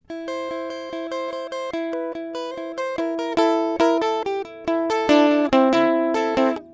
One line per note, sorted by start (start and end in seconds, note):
0.11 0.29 E4
0.29 0.52 E4
0.29 0.71 C5
0.53 0.71 E4
0.71 0.92 E4
0.71 0.84 C5
0.84 1.10 C5
0.94 1.13 E4
1.13 1.29 E4
1.13 1.31 C5
1.30 1.73 E4
1.30 1.50 C5
1.53 1.74 C5
1.75 1.95 E4
1.95 2.15 E4
1.95 2.14 B4
2.14 2.36 E4
2.14 2.33 B4
2.36 2.57 E4
2.36 2.52 B4
2.52 2.75 C5
2.59 2.86 E4
2.79 2.97 C5
2.97 3.20 E4
2.97 3.18 A#4
3.20 3.38 E4
3.20 3.36 A#4
3.38 3.80 E4
3.38 3.79 A4
3.81 4.03 E4
3.81 4.01 A#4
4.03 4.25 E4
4.03 4.31 A4
4.28 4.43 G4
4.43 4.66 E4
4.69 4.91 E4
4.69 4.88 A4
4.91 5.09 E4
4.91 5.49 A4
5.10 5.51 D4
5.10 5.30 E4
5.33 5.51 E4
5.54 5.74 C4
5.54 5.72 E4
5.74 6.16 C4
5.74 6.16 E4
6.16 6.37 C4
6.16 6.37 E4
6.16 6.54 A4
6.38 6.63 C4
6.38 6.68 E4